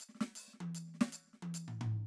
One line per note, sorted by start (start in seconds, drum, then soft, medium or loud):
0.00 percussion medium
0.09 snare soft
0.15 snare soft
0.21 snare medium
0.35 percussion medium
0.48 snare soft
0.53 snare soft
0.60 high tom medium
0.75 percussion medium
0.87 snare soft
0.94 snare soft
1.01 snare medium
1.12 percussion loud
1.27 snare soft
1.33 snare soft
1.42 high tom medium
1.54 percussion loud
1.68 floor tom medium
1.81 floor tom loud